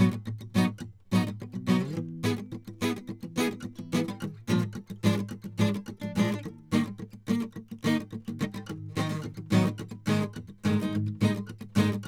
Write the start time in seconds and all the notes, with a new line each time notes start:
0.00 A#2 F#3 B3 D#4
0.56 B2 F#3 B3 D#4
1.13 B2 F#3 B3 D#4
1.56 B2
1.70 F#3 B3 D#4
1.84 B3
1.98 E3 B3
2.25 B3 E4 G#4
2.83 B3 E4 G#4
3.24 E3
3.39 B3 E4 G#4
3.77 E3 E4
3.96 B3 G#4
4.25 D#3
4.49 A#2 F3 G#3 D4
5.05 F3 G#3 D4
5.50 D4
5.60 F3 G#3
6.01 D4
6.17 A#2 F3 G#3
6.21 D4
6.37 D4
6.44 D#3 A#3
6.73 D#3 A#3 D#4
7.31 A#3
7.86 D#3 A#3 D#4
8.42 D3 A3 D#4
8.71 D#3
8.98 D#3 D#4
9.11 D#4
9.27 D#3
9.39 D#3
9.52 G#2 D#3 F#3 B3
9.56 D#4
10.08 G#2 D#3 G#3 D#4
10.38 F2
10.66 G#2 D#3 G#3 D#4
10.82 G#3 D#4
10.87 G#2
10.96 G#2
11.09 G#2
11.22 D3 G#3 D#4
11.31 F2
11.77 G#2 D3 G#3 D#4